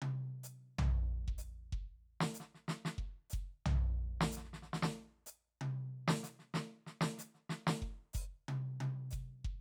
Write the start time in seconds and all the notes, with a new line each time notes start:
0.02 high tom
0.43 hi-hat pedal
0.79 floor tom
1.28 kick
1.38 hi-hat pedal
1.72 kick
2.21 snare
2.34 hi-hat pedal
2.40 snare
2.54 snare
2.68 snare
2.85 snare
2.98 kick
3.30 kick, hi-hat pedal
3.66 floor tom
4.21 snare
4.32 hi-hat pedal
4.37 snare
4.44 snare
4.53 snare
4.62 snare
4.73 snare
4.82 snare
5.26 hi-hat pedal
5.61 high tom
6.08 snare
6.23 snare, hi-hat pedal
6.39 snare
6.54 snare
6.87 snare
7.01 snare
7.18 snare, hi-hat pedal
7.34 snare
7.49 snare
7.67 snare
7.82 kick
8.13 kick, hi-hat pedal
8.48 open hi-hat, high tom
8.80 closed hi-hat, high tom
9.11 kick, hi-hat pedal
9.45 kick